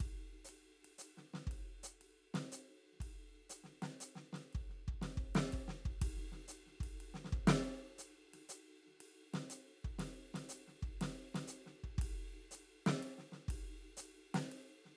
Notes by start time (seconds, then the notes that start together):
0.01 kick, ride
0.45 hi-hat pedal
0.50 ride
0.85 ride
0.99 hi-hat pedal, ride
1.18 snare
1.35 snare
1.48 kick
1.52 ride
1.84 hi-hat pedal
2.02 ride
2.35 snare, ride
2.53 hi-hat pedal, ride
2.93 snare
2.97 snare
3.01 kick, ride
3.50 hi-hat pedal, ride
3.65 snare
3.83 snare, ride
4.01 hi-hat pedal, ride
4.16 snare
4.34 snare, ride
4.54 kick, ride
4.70 snare
4.89 kick
5.02 snare, ride
5.18 kick
5.36 snare, ride
5.53 kick, ride
5.69 snare
5.86 kick
6.02 kick, ride
6.17 snare
6.33 snare
6.49 hi-hat pedal, ride
6.67 snare
6.81 kick, ride
7.01 ride
7.15 snare
7.25 snare
7.33 kick
7.48 snare, ride
7.99 hi-hat pedal, ride
8.34 snare, ride
8.50 hi-hat pedal, ride
8.87 snare
8.91 snare
8.93 snare
9.01 ride
9.35 snare, ride
9.51 hi-hat pedal, ride
9.85 kick
10.00 snare, ride
10.35 snare, ride
10.50 hi-hat pedal, ride
10.68 snare
10.83 kick
11.02 snare, ride
11.35 snare, ride
11.48 hi-hat pedal
11.54 ride
11.67 snare
11.84 kick
11.99 kick, ride
12.52 hi-hat pedal, ride
12.87 snare, ride
13.04 ride
13.19 snare
13.33 snare
13.49 kick, ride
13.98 hi-hat pedal, ride
14.35 snare, ride
14.53 ride
14.86 snare